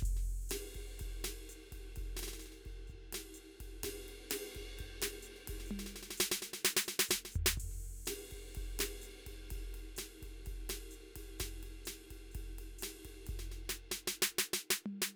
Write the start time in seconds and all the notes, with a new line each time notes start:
0.01 kick, hi-hat pedal
0.06 crash
0.10 kick
0.17 snare
0.50 snare, hi-hat pedal, ride
0.75 kick, ride
0.82 snare
0.88 snare
0.99 kick, hi-hat pedal, ride
1.07 kick
1.25 snare, ride
1.50 hi-hat pedal, ride
1.73 kick, ride
1.78 kick
1.96 kick, hi-hat pedal, ride
2.03 kick
2.17 snare, ride
2.23 snare
2.28 snare
2.34 snare
2.40 snare, hi-hat pedal
2.46 snare
2.52 snare
2.58 snare
2.63 kick, snare, ride
2.67 snare
2.72 snare
2.88 kick, hi-hat pedal, ride
2.95 kick
3.13 snare, ride
3.35 hi-hat pedal
3.41 snare
3.61 kick, ride
3.83 kick, snare, hi-hat pedal, ride
3.89 kick
4.09 ride
4.30 snare, hi-hat pedal, ride
4.55 kick, ride
4.62 kick
4.78 kick, hi-hat pedal, ride
4.86 kick
5.02 snare, ride
5.23 hi-hat pedal
5.36 snare
5.48 kick, ride
5.55 kick
5.60 snare
5.66 hi-hat pedal
5.71 mid tom
5.79 snare
5.86 snare, hi-hat pedal
5.96 snare
6.03 snare
6.11 snare
6.18 snare, hi-hat pedal
6.32 snare
6.42 snare, hi-hat pedal
6.54 snare
6.65 snare, hi-hat pedal
6.77 snare
6.86 snare, hi-hat pedal
7.00 snare
7.09 kick, snare, hi-hat pedal
7.25 snare
7.32 kick, floor tom, hi-hat pedal
7.42 kick
7.46 snare
7.57 kick, hi-hat pedal, crash
7.64 kick
7.71 snare
8.06 snare, hi-hat pedal, ride
8.31 kick, ride
8.38 snare
8.41 snare
8.54 kick, hi-hat pedal, ride
8.80 snare, ride
9.02 hi-hat pedal, ride
9.08 snare
9.27 kick, ride
9.50 kick, hi-hat pedal, ride
9.57 kick
9.75 ride
9.97 snare, hi-hat pedal, ride
10.23 kick, ride
10.27 snare
10.45 kick, hi-hat pedal, ride
10.53 kick
10.70 snare, ride
10.91 hi-hat pedal
11.05 snare
11.16 kick, ride
11.39 kick, snare, hi-hat pedal, ride
11.63 ride
11.86 snare, hi-hat pedal, ride
12.11 kick, ride
12.32 kick, hi-hat pedal, ride
12.41 kick
12.48 snare
12.52 snare
12.59 ride
12.79 hi-hat pedal, ride
12.84 snare
13.05 kick, ride
13.11 snare
13.26 kick, hi-hat pedal, ride
13.35 kick
13.39 snare
13.52 snare
13.70 snare
13.92 snare
14.08 snare
14.23 snare
14.39 snare
14.54 snare
14.71 snare
14.86 mid tom
15.02 snare